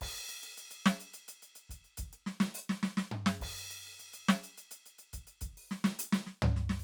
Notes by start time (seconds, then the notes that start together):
0.01 kick, crash
0.18 closed hi-hat
0.29 closed hi-hat
0.44 closed hi-hat
0.58 closed hi-hat
0.71 closed hi-hat
0.86 snare
1.00 closed hi-hat
1.14 closed hi-hat
1.28 closed hi-hat
1.43 closed hi-hat
1.56 closed hi-hat
1.70 closed hi-hat, kick
1.85 closed hi-hat
1.98 closed hi-hat, kick
2.05 kick
2.13 closed hi-hat
2.27 snare
2.41 snare
2.55 open hi-hat, hi-hat pedal
2.70 snare
2.83 snare, hi-hat pedal
2.98 snare
3.12 mid tom
3.27 snare
3.41 kick, crash
3.49 kick
3.58 closed hi-hat
3.71 closed hi-hat
3.87 closed hi-hat
4.00 closed hi-hat
4.14 closed hi-hat
4.29 snare
4.44 closed hi-hat
4.58 closed hi-hat
4.71 closed hi-hat
4.86 closed hi-hat
4.99 closed hi-hat
5.13 closed hi-hat, kick
5.27 closed hi-hat
5.41 closed hi-hat, kick
5.58 open hi-hat
5.71 snare
5.85 snare
5.99 closed hi-hat
6.13 snare
6.27 snare
6.43 floor tom
6.57 snare
6.70 snare
6.80 hi-hat pedal